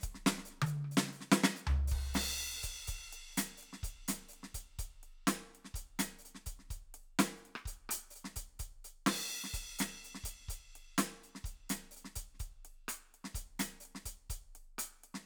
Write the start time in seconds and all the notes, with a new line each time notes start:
0.01 kick, closed hi-hat, hi-hat pedal
0.11 kick, snare
0.26 snare
0.38 snare
0.45 hi-hat pedal
0.50 snare
0.62 high tom
0.66 hi-hat pedal
0.85 cross-stick
0.91 hi-hat pedal
0.97 snare
1.08 snare
1.12 hi-hat pedal
1.21 snare
1.32 snare, hi-hat pedal
1.44 snare
1.55 snare, hi-hat pedal
1.67 floor tom
1.88 hi-hat pedal
1.92 kick, crash
2.14 snare, crash
2.40 closed hi-hat
2.56 snare
2.63 closed hi-hat, kick
2.74 snare
2.87 closed hi-hat, kick
2.94 kick
3.13 closed hi-hat
3.32 hi-hat pedal
3.37 closed hi-hat, snare
3.58 hi-hat pedal
3.63 closed hi-hat
3.73 snare
3.83 closed hi-hat, kick
4.08 closed hi-hat, snare
4.29 hi-hat pedal
4.34 closed hi-hat
4.43 snare
4.54 closed hi-hat, kick
4.79 closed hi-hat, kick
5.03 closed hi-hat
5.27 closed hi-hat, snare
5.55 closed hi-hat
5.65 snare
5.74 closed hi-hat, kick
5.99 closed hi-hat, snare
6.19 hi-hat pedal
6.25 closed hi-hat
6.35 snare
6.46 closed hi-hat, kick
6.59 snare
6.64 snare
6.67 closed hi-hat, kick, snare
6.76 kick
6.94 closed hi-hat
7.19 closed hi-hat, snare
7.36 hi-hat pedal
7.45 closed hi-hat
7.55 cross-stick
7.66 closed hi-hat, kick
7.89 closed hi-hat, cross-stick
8.11 hi-hat pedal
8.16 closed hi-hat
8.25 snare
8.36 closed hi-hat, kick
8.59 closed hi-hat, kick
8.85 closed hi-hat
9.06 snare, crash
9.29 closed hi-hat, hi-hat pedal
9.44 snare
9.53 closed hi-hat, kick, snare
9.79 closed hi-hat, snare
10.04 closed hi-hat
10.15 snare
10.24 closed hi-hat, kick
10.40 snare
10.49 closed hi-hat, kick
10.75 closed hi-hat
10.98 closed hi-hat, snare
11.24 closed hi-hat
11.35 snare
11.44 closed hi-hat, kick
11.70 closed hi-hat, snare
11.91 hi-hat pedal
11.97 closed hi-hat
12.05 snare
12.16 closed hi-hat, kick
12.34 snare
12.40 closed hi-hat, kick
12.65 closed hi-hat
12.88 closed hi-hat, cross-stick
13.14 closed hi-hat
13.24 snare
13.35 closed hi-hat, kick
13.59 open hi-hat, snare
13.80 hi-hat pedal
13.85 closed hi-hat
13.95 snare
14.06 closed hi-hat, kick
14.30 closed hi-hat, kick
14.55 closed hi-hat
14.78 closed hi-hat, cross-stick
15.04 closed hi-hat
15.14 snare